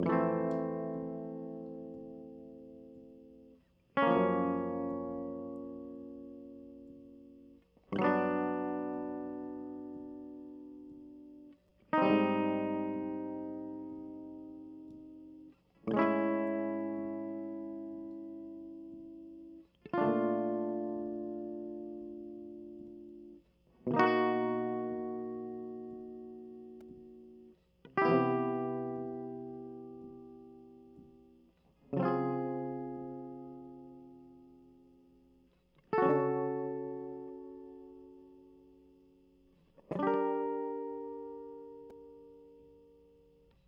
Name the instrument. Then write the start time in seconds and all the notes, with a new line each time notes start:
electric guitar
0.01 F2
0.07 E3 A3
0.12 C4
3.97 C#4
4.03 A#3
4.07 F3
4.17 F#2
7.94 G2
7.99 F#3 B3
8.04 D4
11.93 D#4
11.98 C4
12.02 A2 G3
12.12 G#2
15.89 A2
15.94 G#3 C#4
15.99 E4
19.94 F4
19.98 A3 D4
20.08 A#2
23.88 B2
23.94 A#3 D#4
23.99 F#4
27.88 C3
27.97 G4
28.02 B3 E4
28.12 C3
31.94 C#3
32.00 C4 F4
32.05 G#4
35.78 D#3
35.93 A4
35.98 F#4
36.02 C#4
36.10 D3
36.21 C#3
39.78 C#4
39.99 D4 G4
40.07 A#4